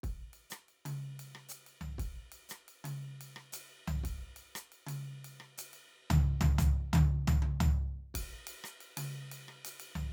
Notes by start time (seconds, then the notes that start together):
0.03 kick, ride
0.33 ride
0.50 cross-stick, hi-hat pedal
0.68 ride
0.85 mid tom, ride
1.19 ride
1.35 cross-stick
1.49 hi-hat pedal, ride
1.66 ride
1.81 floor tom
1.98 kick, ride
2.32 ride
2.49 cross-stick, hi-hat pedal
2.68 ride
2.84 mid tom, ride
3.21 ride
3.36 cross-stick
3.52 hi-hat pedal, ride
3.87 floor tom, ride
4.03 kick, ride
4.36 ride
4.55 cross-stick, hi-hat pedal
4.72 ride
4.86 mid tom, ride
5.24 ride
5.40 cross-stick
5.58 hi-hat pedal, ride
5.73 ride
6.10 floor tom, mid tom
6.41 floor tom, mid tom
6.58 floor tom, hi-hat pedal
6.93 floor tom, mid tom
7.27 floor tom
7.42 mid tom
7.60 floor tom
8.14 kick, ride
8.47 ride
8.64 cross-stick, hi-hat pedal
8.80 ride
8.97 mid tom, ride
9.31 ride
9.48 cross-stick
9.65 hi-hat pedal, ride
9.80 ride
9.95 floor tom